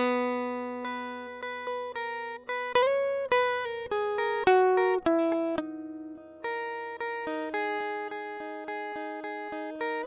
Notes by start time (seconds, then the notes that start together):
0.00 B3
0.86 B4
1.44 B4
1.68 B4
1.97 A#4
2.51 B4
2.77 B4
2.88 C#5
3.33 B4
3.93 G#4
4.20 A#4
4.49 F#4
4.79 A#4
5.08 E4
5.60 D#4
6.46 A#4
7.02 A#4
7.29 D#4
7.55 G#4
8.14 G#4
8.42 D#4
8.70 G#4
8.98 D#4
9.26 G#4
9.54 D#4
9.82 A#4